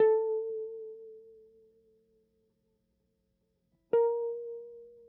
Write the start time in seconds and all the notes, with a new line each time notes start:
0.00 A4
3.93 A#4